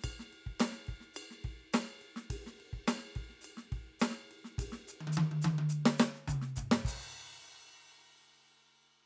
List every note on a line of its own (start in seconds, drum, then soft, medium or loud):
0.01 kick soft
0.01 hi-hat pedal soft
0.01 ride bell loud
0.20 snare soft
0.33 ride soft
0.47 kick soft
0.60 snare loud
0.60 hi-hat pedal medium
0.60 ride bell loud
0.72 snare soft
0.87 kick soft
0.87 ride soft
1.01 snare soft
1.14 hi-hat pedal soft
1.14 ride bell loud
1.31 snare soft
1.41 kick soft
1.41 snare soft
1.41 ride soft
1.50 kick soft
1.73 snare loud
1.73 hi-hat pedal medium
1.73 ride bell loud
1.84 snare soft
2.02 ride soft
2.16 snare soft
2.30 kick soft
2.30 hi-hat pedal medium
2.30 ride loud
2.36 kick soft
2.47 snare soft
2.60 ride soft
2.73 kick soft
2.88 snare medium
2.88 hi-hat pedal medium
2.88 ride bell loud
2.98 snare soft
3.16 kick soft
3.16 ride soft
3.22 kick soft
3.30 snare soft
3.41 hi-hat pedal medium
3.41 ride bell medium
3.57 snare soft
3.66 snare soft
3.72 kick soft
3.72 ride soft
3.78 kick soft
3.81 kick soft
4.00 snare loud
4.00 hi-hat pedal medium
4.00 ride bell loud
4.11 snare soft
4.31 ride medium
4.45 snare soft
4.58 kick soft
4.58 hi-hat pedal medium
4.58 ride loud
4.65 kick soft
4.68 kick soft
4.72 snare soft
4.76 kick soft
4.88 hi-hat pedal medium
5.01 high tom medium
5.08 high tom loud
5.13 hi-hat pedal loud
5.17 high tom loud
5.32 high tom medium
5.42 hi-hat pedal loud
5.42 high tom loud
5.59 high tom loud
5.69 hi-hat pedal loud
5.86 snare loud
5.99 snare loud
5.99 hi-hat pedal loud
6.15 snare soft
6.28 kick soft
6.28 hi-hat pedal loud
6.28 mid tom loud
6.34 kick soft
6.42 snare soft
6.56 kick soft
6.56 hi-hat pedal loud
6.56 floor tom medium
6.63 kick soft
6.72 snare loud
6.85 kick medium
6.85 hi-hat pedal loud
6.85 crash medium
6.93 kick soft